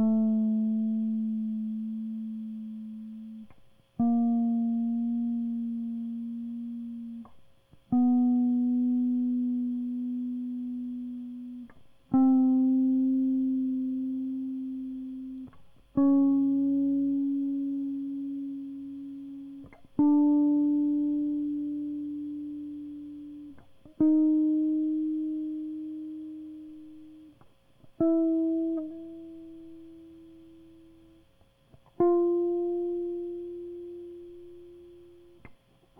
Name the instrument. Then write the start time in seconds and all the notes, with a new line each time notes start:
electric guitar
0.00 A3
4.00 A#3
7.93 B3
12.14 C4
15.98 C#4
20.00 D4
24.01 D#4
28.01 E4
28.79 D#4
28.92 E4
32.01 F4